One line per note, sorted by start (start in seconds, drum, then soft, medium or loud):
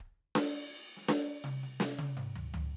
0.00 kick soft
0.35 snare loud
0.35 ride loud
0.96 snare soft
1.01 snare soft
1.04 snare soft
1.08 snare loud
1.44 high tom loud
1.63 high tom medium
1.80 snare loud
1.98 open hi-hat soft
1.98 high tom loud
2.17 mid tom medium
2.35 floor tom medium
2.54 floor tom medium